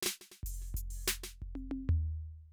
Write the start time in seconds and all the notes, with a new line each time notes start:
0.03 snare
0.06 snare
0.21 snare
0.32 snare
0.43 open hi-hat, kick
0.54 hi-hat pedal
0.62 snare
0.74 closed hi-hat, kick
0.91 hi-hat pedal
1.08 snare
1.24 snare
1.42 kick
1.55 closed hi-hat, high tom
1.71 high tom
1.89 floor tom